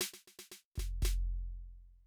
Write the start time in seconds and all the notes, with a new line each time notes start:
0.01 snare
0.13 snare
0.27 snare
0.39 snare
0.52 snare
0.75 kick, snare
0.79 snare
1.02 kick, snare
1.05 snare